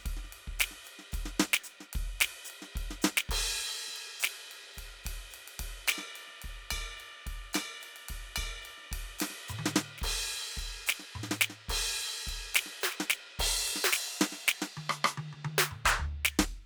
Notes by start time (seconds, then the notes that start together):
0.01 hi-hat pedal
0.06 kick, ride
0.12 kick
0.17 snare
0.24 snare
0.32 ride
0.47 kick
0.59 snare, hi-hat pedal, ride
0.71 snare
0.84 hi-hat pedal, ride
0.99 snare
1.12 kick, hi-hat pedal, ride
1.20 kick
1.26 snare
1.40 snare
1.53 snare
1.64 hi-hat pedal, ride bell
1.81 snare
1.93 kick, ride
2.02 kick
2.20 snare, ride
2.45 hi-hat pedal
2.50 ride
2.62 snare
2.76 kick, ride
2.82 kick
2.91 snare
3.02 snare, hi-hat pedal
3.17 snare
3.29 kick, crash
3.36 kick
3.88 snare
3.96 ride
4.20 snare, hi-hat pedal, ride
4.51 ride
4.74 kick, hi-hat pedal
4.78 ride
5.04 kick, hi-hat pedal, ride
5.11 kick
5.31 hi-hat pedal, ride
5.48 ride
5.59 kick, snare, ride
5.87 snare, hi-hat pedal, ride bell
5.98 snare
6.15 hi-hat pedal, ride
6.28 snare
6.42 kick, ride
6.71 kick, ride bell
6.77 kick
6.97 hi-hat pedal, ride
7.27 kick, ride
7.53 snare, hi-hat pedal, ride bell
7.80 hi-hat pedal, ride
7.96 ride
8.09 kick, ride
8.36 kick, ride bell
8.44 kick
8.62 hi-hat pedal, ride
8.78 snare
8.83 snare
8.86 snare
8.92 kick, ride
8.97 kick
9.19 snare, hi-hat pedal, ride
9.30 snare
9.48 hi-hat pedal, mid tom
9.59 high tom
9.66 snare
9.98 kick, snare
10.03 crash
10.08 kick
10.52 snare
10.57 kick, ride
10.65 kick
10.87 snare, hi-hat pedal, ride
10.99 snare
11.15 mid tom
11.23 snare
11.31 snare
11.37 hi-hat pedal
11.41 snare
11.50 snare
11.69 kick, snare, crash
11.75 kick
11.97 hi-hat pedal, ride
12.21 snare
12.27 kick, ride
12.55 snare, hi-hat pedal, ride
12.66 snare
12.81 snare, hi-hat pedal
12.91 snare
13.00 snare
13.10 snare, hi-hat pedal
13.39 kick, snare, crash
13.68 ride
13.76 snare
13.84 snare
13.92 snare, hi-hat pedal
14.21 snare
14.32 snare
14.48 snare
14.62 snare
14.77 high tom
14.89 cross-stick
15.04 cross-stick
15.18 high tom
15.33 high tom
15.45 high tom
15.58 snare, hi-hat pedal
15.71 mid tom
15.85 kick, percussion, hi-hat pedal
15.99 floor tom
16.12 kick
16.25 snare
16.39 kick, snare